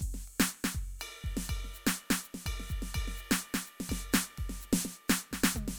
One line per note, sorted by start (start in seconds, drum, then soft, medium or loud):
0.01 kick soft
0.01 crash loud
0.14 snare soft
0.27 ride medium
0.40 snare loud
0.46 hi-hat pedal medium
0.52 ride soft
0.64 snare medium
0.70 hi-hat pedal medium
0.75 kick soft
0.75 ride medium
0.80 kick soft
0.83 kick soft
0.99 hi-hat pedal medium
0.99 ride bell loud
1.24 kick soft
1.24 ride medium
1.30 kick soft
1.32 kick soft
1.37 snare medium
1.43 hi-hat pedal medium
1.49 kick soft
1.49 ride bell loud
1.55 kick soft
1.64 snare soft
1.73 hi-hat pedal medium
1.73 ride medium
1.86 snare loud
2.00 ride soft
2.10 snare loud
2.22 hi-hat pedal medium
2.22 ride soft
2.34 snare soft
2.46 kick soft
2.46 ride bell loud
2.51 kick soft
2.60 snare soft
2.68 kick soft
2.68 hi-hat pedal medium
2.68 ride medium
2.82 snare soft
2.94 kick soft
2.94 ride bell loud
3.04 kick soft
3.04 snare soft
3.16 hi-hat pedal medium
3.20 ride medium
3.31 snare loud
3.45 ride medium
3.54 snare medium
3.65 hi-hat pedal medium
3.65 ride medium
3.80 snare medium
3.89 kick soft
3.89 snare medium
3.89 ride bell loud
4.12 snare loud
4.12 hi-hat pedal medium
4.12 ride loud
4.38 kick soft
4.38 ride loud
4.49 snare soft
4.60 hi-hat pedal medium
4.64 snare soft
4.73 snare loud
4.81 snare medium
4.81 hi-hat pedal soft
5.08 snare loud
5.08 hi-hat pedal medium
5.31 kick soft
5.31 snare medium
5.43 snare loud
5.55 kick soft
5.55 hi-hat pedal medium
5.55 mid tom medium
5.68 snare medium